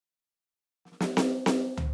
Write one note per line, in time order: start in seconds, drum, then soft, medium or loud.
0.85 snare soft
0.92 snare soft
0.97 snare loud
0.97 hi-hat pedal soft
1.17 snare loud
1.46 snare loud
1.46 hi-hat pedal soft
1.78 floor tom loud